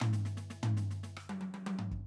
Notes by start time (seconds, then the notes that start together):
0.00 cross-stick, floor tom
0.13 snare
0.25 snare
0.37 snare
0.50 snare
0.63 floor tom
0.77 snare
0.91 snare
1.03 snare
1.17 cross-stick
1.29 closed hi-hat, high tom
1.41 high tom
1.54 high tom
1.66 high tom
1.79 floor tom
1.91 kick